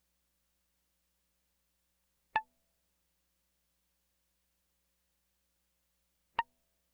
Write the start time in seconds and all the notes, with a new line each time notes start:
2.36 A5
6.39 A#5